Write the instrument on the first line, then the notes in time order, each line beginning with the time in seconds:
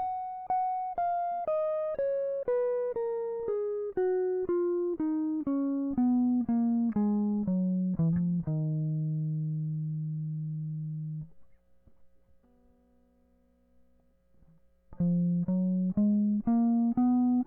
electric guitar
0.00 F#5
0.50 F#5
0.98 F5
1.48 D#5
1.99 C#5
2.48 B4
2.96 A#4
3.48 G#4
3.98 F#4
4.49 F4
5.00 D#4
5.47 C#4
5.98 B3
6.50 A#3
6.97 G#3
7.49 F#3
8.01 E3
8.49 D#3
15.01 F3
15.49 F#3
15.98 G#3
16.48 A#3
16.98 B3